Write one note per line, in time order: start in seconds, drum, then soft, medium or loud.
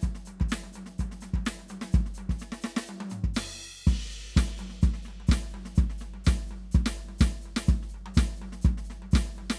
0.01 kick medium
0.01 hi-hat pedal medium
0.01 high tom medium
0.15 snare soft
0.25 hi-hat pedal medium
0.25 high tom medium
0.40 kick medium
0.40 high tom medium
0.48 snare loud
0.48 hi-hat pedal medium
0.64 high tom medium
0.73 hi-hat pedal medium
0.73 high tom medium
0.86 snare soft
0.98 kick medium
0.98 hi-hat pedal medium
0.98 high tom medium
1.11 snare soft
1.21 snare soft
1.21 hi-hat pedal medium
1.21 high tom medium
1.33 kick medium
1.33 high tom medium
1.45 snare loud
1.45 hi-hat pedal medium
1.59 high tom medium
1.68 hi-hat pedal medium
1.68 high tom medium
1.81 snare medium
1.92 kick loud
1.92 hi-hat pedal medium
1.92 high tom medium
2.06 snare soft
2.14 hi-hat pedal medium
2.14 high tom medium
2.29 kick medium
2.29 snare soft
2.39 snare medium
2.39 hi-hat pedal medium
2.52 snare medium
2.61 snare loud
2.61 hi-hat pedal medium
2.76 snare loud
2.85 hi-hat pedal medium
2.85 high tom medium
3.00 high tom loud
3.10 floor tom medium
3.10 hi-hat pedal medium
3.24 kick medium
3.34 snare loud
3.34 hi-hat pedal medium
3.34 crash loud
3.61 hi-hat pedal medium
3.87 kick loud
3.87 hi-hat pedal medium
3.87 crash medium
3.87 ride medium
4.10 hi-hat pedal medium
4.36 kick loud
4.36 snare loud
4.36 hi-hat pedal medium
4.48 high tom medium
4.57 hi-hat pedal medium
4.57 high tom medium
4.69 snare soft
4.82 kick loud
4.82 hi-hat pedal medium
4.82 high tom medium
4.93 snare soft
5.02 snare soft
5.02 hi-hat pedal soft
5.08 high tom soft
5.20 high tom medium
5.27 kick loud
5.27 hi-hat pedal medium
5.31 snare loud
5.43 high tom soft
5.49 hi-hat pedal soft
5.54 high tom medium
5.65 snare medium
5.75 kick loud
5.75 hi-hat pedal loud
5.79 high tom medium
5.90 snare soft
5.98 snare soft
5.98 hi-hat pedal medium
6.02 high tom soft
6.13 high tom medium
6.24 kick loud
6.24 snare loud
6.24 hi-hat pedal medium
6.38 high tom soft
6.47 hi-hat pedal soft
6.47 high tom medium
6.65 snare soft
6.71 kick loud
6.71 hi-hat pedal medium
6.71 high tom medium
6.86 snare loud
6.93 hi-hat pedal soft
6.93 high tom soft
7.08 high tom medium
7.18 kick loud
7.18 snare loud
7.18 hi-hat pedal medium
7.41 hi-hat pedal medium
7.46 high tom medium
7.56 snare loud
7.67 kick loud
7.67 hi-hat pedal medium
7.67 high tom soft
7.82 snare soft
7.89 hi-hat pedal medium
7.94 high tom soft
8.06 high tom medium
8.14 kick loud
8.14 snare loud
8.14 hi-hat pedal medium
8.30 high tom soft
8.36 hi-hat pedal medium
8.42 high tom medium
8.52 snare soft
8.61 kick loud
8.61 hi-hat pedal medium
8.66 high tom medium
8.77 snare soft
8.84 hi-hat pedal medium
8.90 snare soft
8.90 high tom soft
9.02 high tom medium
9.11 kick loud
9.11 snare loud
9.11 hi-hat pedal medium
9.26 high tom soft
9.35 hi-hat pedal soft
9.35 high tom medium
9.50 snare loud